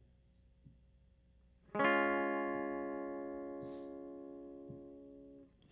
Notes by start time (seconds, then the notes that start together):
1.75 G#3
1.79 C#4
1.84 F4